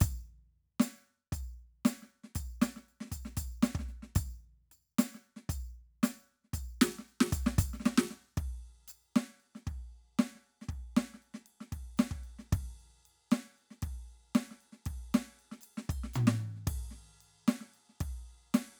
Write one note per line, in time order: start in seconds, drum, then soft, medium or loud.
0.01 kick loud
0.01 percussion loud
0.28 percussion soft
0.80 snare loud
0.80 percussion loud
1.33 kick medium
1.33 percussion medium
1.60 percussion soft
1.86 snare loud
1.86 percussion medium
2.03 snare soft
2.24 snare soft
2.36 kick medium
2.36 percussion medium
2.62 snare loud
2.62 percussion medium
2.77 snare soft
2.89 percussion soft
3.01 snare medium
3.05 snare soft
3.12 kick medium
3.12 percussion medium
3.26 snare soft
3.37 kick medium
3.37 percussion loud
3.63 snare loud
3.63 percussion medium
3.75 kick medium
3.80 snare soft
3.88 snare soft
3.88 percussion soft
4.03 snare soft
4.16 kick loud
4.16 percussion loud
4.72 percussion soft
4.99 snare loud
4.99 percussion loud
5.15 snare soft
5.25 percussion soft
5.37 snare soft
5.50 kick medium
5.50 percussion medium
6.03 snare loud
6.03 percussion loud
6.44 snare soft
6.54 kick medium
6.54 percussion medium
6.82 snare loud
6.82 percussion loud
6.99 snare soft
7.08 percussion soft
7.21 snare loud
7.33 kick loud
7.33 percussion loud
7.47 snare loud
7.59 kick loud
7.59 percussion loud
7.74 snare soft
7.80 snare soft
7.83 snare soft
7.83 percussion soft
7.86 snare loud
7.98 snare loud
8.11 snare soft
8.38 kick medium
8.38 ride medium
8.88 ride soft
8.88 percussion medium
9.16 snare loud
9.16 ride soft
9.41 ride soft
9.56 snare soft
9.67 kick medium
9.67 ride soft
10.19 snare loud
10.19 ride soft
10.36 snare soft
10.62 snare soft
10.69 kick medium
10.69 ride soft
10.97 snare loud
10.97 ride soft
11.14 snare soft
11.23 ride soft
11.34 snare soft
11.47 ride soft
11.61 snare soft
11.73 kick medium
11.73 ride medium
11.98 snare loud
11.98 ride medium
11.98 percussion soft
12.11 kick medium
12.24 ride soft
12.39 snare soft
12.53 kick loud
12.53 ride medium
12.80 ride soft
13.06 ride soft
13.32 snare loud
13.32 ride soft
13.59 ride soft
13.71 snare soft
13.83 kick medium
13.83 ride medium
14.09 ride soft
14.35 snare loud
14.35 ride medium
14.51 snare soft
14.61 ride soft
14.73 snare soft
14.86 kick medium
14.86 ride medium
15.15 snare loud
15.15 ride medium
15.39 ride soft
15.52 snare soft
15.61 ride medium
15.61 percussion soft
15.78 snare medium
15.90 kick medium
15.90 ride bell medium
16.04 snare soft
16.14 floor tom loud
16.14 percussion medium
16.28 snare loud
16.40 floor tom soft
16.56 snare soft
16.67 kick medium
16.67 ride loud
16.91 snare soft
17.21 ride soft
17.48 snare loud
17.48 ride medium
17.61 snare soft
17.74 ride soft
17.89 snare soft
18.01 kick medium
18.01 ride medium
18.55 snare loud
18.55 ride medium